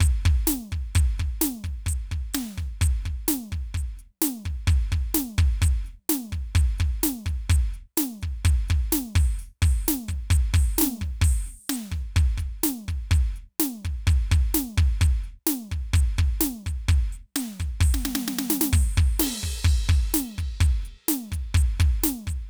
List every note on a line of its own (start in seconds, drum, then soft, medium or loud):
0.01 closed hi-hat loud
0.01 kick loud
0.21 snare soft
0.25 kick loud
0.25 closed hi-hat soft
0.48 closed hi-hat loud
0.48 snare loud
0.71 kick medium
0.71 closed hi-hat soft
0.95 closed hi-hat loud
0.95 kick loud
1.19 kick medium
1.19 closed hi-hat soft
1.42 closed hi-hat loud
1.42 snare loud
1.64 kick medium
1.64 closed hi-hat soft
1.87 closed hi-hat loud
1.87 kick medium
2.12 kick medium
2.12 closed hi-hat soft
2.34 closed hi-hat loud
2.34 snare loud
2.58 kick medium
2.58 closed hi-hat soft
2.82 closed hi-hat loud
2.82 kick loud
3.02 kick medium
3.02 snare soft
3.02 closed hi-hat soft
3.28 closed hi-hat loud
3.28 snare loud
3.52 kick medium
3.52 closed hi-hat soft
3.75 closed hi-hat medium
3.75 kick medium
3.97 snare soft
3.97 closed hi-hat medium
4.22 closed hi-hat loud
4.22 snare loud
4.45 kick medium
4.45 closed hi-hat soft
4.68 closed hi-hat medium
4.68 kick loud
4.92 kick medium
4.92 closed hi-hat medium
5.15 closed hi-hat loud
5.15 snare loud
5.38 closed hi-hat medium
5.38 kick loud
5.62 closed hi-hat loud
5.62 kick loud
5.85 snare soft
5.85 closed hi-hat soft
6.10 closed hi-hat loud
6.10 snare loud
6.17 snare soft
6.33 kick medium
6.33 closed hi-hat soft
6.55 closed hi-hat loud
6.55 kick loud
6.79 kick loud
6.79 closed hi-hat medium
7.04 closed hi-hat loud
7.04 snare loud
7.26 kick medium
7.26 closed hi-hat medium
7.50 closed hi-hat loud
7.50 kick loud
7.74 closed hi-hat soft
7.97 closed hi-hat medium
7.97 snare loud
8.22 kick medium
8.22 closed hi-hat soft
8.45 closed hi-hat loud
8.45 kick loud
8.68 kick loud
8.68 snare soft
8.68 closed hi-hat medium
8.93 snare loud
8.93 closed hi-hat medium
9.16 open hi-hat medium
9.16 kick loud
9.39 hi-hat pedal soft
9.39 open hi-hat medium
9.62 open hi-hat medium
9.62 kick loud
9.85 snare loud
9.85 hi-hat pedal soft
9.89 closed hi-hat soft
10.09 closed hi-hat medium
10.09 kick medium
10.31 closed hi-hat loud
10.31 kick loud
10.54 open hi-hat loud
10.54 kick loud
10.54 snare soft
10.79 snare loud
10.79 hi-hat pedal soft
10.82 snare loud
11.02 kick medium
11.22 open hi-hat loud
11.22 kick loud
11.47 snare soft
11.47 open hi-hat soft
11.67 snare loud
11.67 hi-hat pedal soft
11.71 closed hi-hat loud
11.92 kick medium
11.92 closed hi-hat soft
12.17 closed hi-hat medium
12.17 kick loud
12.34 snare soft
12.38 kick medium
12.38 closed hi-hat medium
12.64 closed hi-hat loud
12.64 snare loud
12.77 snare soft
12.79 snare soft
12.88 kick medium
12.88 closed hi-hat medium
13.11 closed hi-hat medium
13.11 kick loud
13.35 snare soft
13.35 closed hi-hat soft
13.60 closed hi-hat medium
13.60 snare loud
13.85 kick medium
13.85 closed hi-hat medium
14.07 closed hi-hat medium
14.07 kick loud
14.32 closed hi-hat medium
14.32 kick loud
14.32 snare soft
14.55 closed hi-hat medium
14.55 snare loud
14.78 kick loud
14.78 closed hi-hat medium
15.01 closed hi-hat loud
15.01 kick loud
15.24 closed hi-hat soft
15.47 closed hi-hat medium
15.47 snare loud
15.72 kick medium
15.72 closed hi-hat soft
15.94 closed hi-hat loud
15.94 kick loud
16.18 kick loud
16.18 snare soft
16.18 closed hi-hat medium
16.41 closed hi-hat loud
16.41 snare loud
16.57 snare soft
16.67 closed hi-hat medium
16.67 kick medium
16.89 closed hi-hat medium
16.89 kick loud
17.13 closed hi-hat medium
17.13 snare soft
17.36 closed hi-hat loud
17.36 snare loud
17.60 closed hi-hat medium
17.60 kick medium
17.81 open hi-hat loud
17.81 kick loud
17.95 snare medium
18.01 hi-hat pedal soft
18.05 snare loud
18.28 snare loud
18.39 snare loud
18.45 kick soft
18.50 snare loud
18.61 snare loud
18.73 open hi-hat loud
18.73 kick loud
18.98 kick loud
19.17 snare loud
19.17 hi-hat pedal soft
19.17 crash loud
19.27 snare medium
19.44 closed hi-hat soft
19.44 kick medium
19.65 closed hi-hat medium
19.65 kick loud
19.89 closed hi-hat medium
19.89 kick loud
19.89 snare soft
20.14 closed hi-hat loud
20.14 snare loud
20.31 snare soft
20.38 kick medium
20.38 closed hi-hat medium
20.61 closed hi-hat loud
20.61 kick loud
20.82 snare soft
20.82 closed hi-hat medium
21.09 closed hi-hat loud
21.09 snare loud
21.32 kick medium
21.32 closed hi-hat loud
21.55 closed hi-hat loud
21.55 kick loud
21.78 kick loud
21.78 snare soft
21.78 closed hi-hat loud
22.04 closed hi-hat loud
22.04 snare loud
22.27 closed hi-hat medium
22.27 kick medium